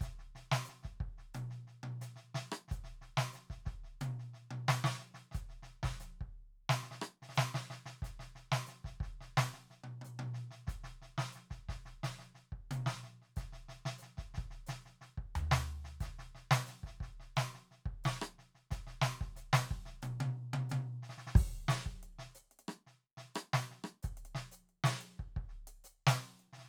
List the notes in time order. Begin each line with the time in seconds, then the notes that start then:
0.01 kick, snare, hi-hat pedal
0.19 snare
0.35 snare
0.52 snare
0.65 snare, hi-hat pedal
0.83 kick, snare
1.00 kick
1.18 snare
1.34 hi-hat pedal, high tom
1.50 snare
1.67 snare
1.83 high tom
2.01 snare, hi-hat pedal
2.16 snare
2.35 snare
2.52 cross-stick
2.68 kick, snare, hi-hat pedal
2.84 snare
3.01 snare
3.17 snare
3.33 snare, hi-hat pedal
3.50 kick, snare
3.66 kick, snare
3.84 snare
4.01 hi-hat pedal, high tom
4.19 snare
4.34 snare
4.51 high tom
4.68 snare, hi-hat pedal
4.84 snare
4.98 snare
5.14 snare
5.31 kick, snare, hi-hat pedal
5.49 snare
5.63 snare
5.83 kick, snare
6.00 snare, hi-hat pedal
6.21 kick
6.69 snare, hi-hat pedal
6.83 snare
6.91 snare
7.02 cross-stick
7.22 snare
7.29 snare
7.35 snare, hi-hat pedal
7.54 snare
7.70 snare
7.86 snare
8.02 kick, snare, hi-hat pedal
8.19 snare
8.35 snare
8.52 snare
8.66 snare, hi-hat pedal
8.84 kick, snare
9.00 kick, snare
9.21 snare
9.37 snare, hi-hat pedal
9.53 snare
9.70 snare
9.84 high tom
10.01 hi-hat pedal, high tom
10.19 high tom
10.34 snare
10.51 snare
10.67 kick, snare, hi-hat pedal
10.84 snare
11.02 snare
11.18 snare
11.32 snare, hi-hat pedal
11.50 kick, snare
11.69 kick, snare
11.86 snare
12.03 snare, hi-hat pedal
12.19 snare
12.35 snare
12.52 kick
12.71 hi-hat pedal, high tom
12.86 snare
13.03 snare
13.22 snare
13.36 kick, snare, hi-hat pedal
13.53 snare
13.69 snare
13.85 snare
13.98 snare, hi-hat pedal
14.17 kick, snare
14.34 kick, snare
14.51 snare
14.67 snare, hi-hat pedal
14.85 snare
15.01 snare
15.18 kick
15.35 floor tom, hi-hat pedal
15.51 snare
15.84 snare
16.00 kick, snare, hi-hat pedal
16.19 snare
16.35 snare
16.51 snare
16.67 snare, hi-hat pedal
16.83 kick, snare
17.00 kick, snare
17.20 snare
17.36 snare, hi-hat pedal
17.54 snare
17.71 snare
17.86 kick
18.04 snare, hi-hat pedal
18.22 cross-stick
18.38 snare
18.55 snare
18.71 kick, snare, hi-hat pedal
18.87 snare
19.02 snare
19.21 kick, snare
19.36 snare, hi-hat pedal
19.53 snare
19.71 kick, snare
19.86 snare
20.02 hi-hat pedal, high tom
20.20 high tom
20.53 high tom
20.69 hi-hat pedal, high tom
21.03 snare
21.09 snare
21.18 snare
21.27 snare
21.35 open hi-hat, kick
21.68 snare, hi-hat pedal
21.86 kick
22.03 closed hi-hat
22.19 snare
22.35 hi-hat pedal
22.51 closed hi-hat
22.59 closed hi-hat
22.68 cross-stick
22.87 snare
23.17 snare
23.35 cross-stick, hi-hat pedal
23.53 snare
23.71 snare
23.84 cross-stick
24.03 kick, hi-hat pedal
24.17 closed hi-hat
24.25 closed hi-hat
24.35 snare
24.52 hi-hat pedal
24.69 closed hi-hat
24.84 snare
25.01 closed hi-hat
25.19 kick
25.36 kick
25.49 snare
25.67 closed hi-hat
25.84 hi-hat pedal
26.07 snare
26.39 closed hi-hat
26.53 snare
26.58 snare
26.64 snare